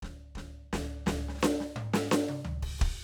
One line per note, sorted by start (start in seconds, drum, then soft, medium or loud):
0.02 kick soft
0.02 snare soft
0.02 floor tom medium
0.35 kick soft
0.35 snare medium
0.35 floor tom medium
0.73 kick soft
0.73 snare loud
0.73 floor tom medium
1.06 kick soft
1.06 snare loud
1.06 floor tom loud
1.28 snare soft
1.33 snare soft
1.37 snare soft
1.37 hi-hat pedal medium
1.43 snare loud
1.60 snare soft
1.76 mid tom loud
1.93 snare loud
2.08 snare loud
2.08 hi-hat pedal soft
2.28 high tom medium
2.45 floor tom loud
2.62 kick medium
2.62 crash medium
2.78 kick loud
2.78 crash medium